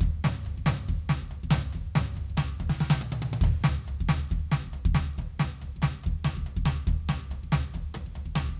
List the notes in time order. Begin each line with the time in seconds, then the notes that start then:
0.01 kick, floor tom
0.24 snare, floor tom
0.45 kick, floor tom
0.58 kick
0.66 snare, floor tom
0.89 kick, floor tom
1.09 snare, floor tom
1.23 kick, snare
1.31 floor tom
1.44 kick
1.51 snare, floor tom
1.73 kick, floor tom
1.96 snare, floor tom
2.16 kick, floor tom
2.30 kick
2.37 snare, floor tom
2.52 snare
2.60 kick, floor tom
2.70 snare
2.81 snare
2.90 snare
3.01 high tom
3.12 high tom
3.22 high tom
3.33 high tom
3.41 kick, floor tom
3.64 snare, floor tom
3.72 snare
3.78 snare
3.87 kick, floor tom
4.01 kick
4.09 snare, floor tom
4.29 kick, snare, floor tom
4.52 snare, floor tom
4.66 kick
4.73 floor tom
4.85 kick
4.95 snare, floor tom
5.18 kick, floor tom
5.40 snare, floor tom
5.62 kick, floor tom
5.76 kick
5.82 snare, floor tom
6.04 kick, floor tom
6.25 snare, floor tom
6.37 kick
6.47 floor tom
6.57 kick
6.66 snare, floor tom
6.87 kick, floor tom
7.09 snare, floor tom
7.31 kick, floor tom
7.44 kick
7.52 snare, floor tom
7.74 kick, floor tom
7.94 cross-stick, floor tom
8.06 kick
8.16 floor tom
8.26 kick
8.36 snare, floor tom
8.49 kick